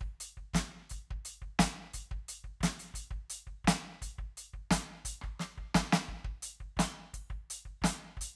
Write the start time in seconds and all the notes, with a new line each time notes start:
0.01 kick
0.20 closed hi-hat
0.37 kick
0.54 closed hi-hat, kick, snare
0.90 closed hi-hat, kick
1.11 kick
1.25 closed hi-hat
1.42 kick
1.59 closed hi-hat, kick, snare
1.94 closed hi-hat, kick
2.11 kick
2.29 closed hi-hat
2.44 kick
2.61 closed hi-hat, kick, snare
2.79 closed hi-hat
2.94 closed hi-hat, kick
3.11 kick
3.30 closed hi-hat
3.47 kick
3.65 closed hi-hat, kick, snare
4.02 closed hi-hat, kick
4.19 kick
4.37 closed hi-hat
4.54 kick
4.71 closed hi-hat, kick, snare
4.98 snare
5.05 closed hi-hat, kick
5.22 kick, cross-stick
5.40 snare
5.58 kick
5.75 kick, snare
5.93 snare
6.09 kick
6.25 kick
6.43 closed hi-hat
6.60 kick
6.77 closed hi-hat, kick, snare
7.14 kick, closed hi-hat
7.30 kick
7.50 closed hi-hat
7.65 kick
7.82 closed hi-hat, kick, snare
8.17 kick
8.21 closed hi-hat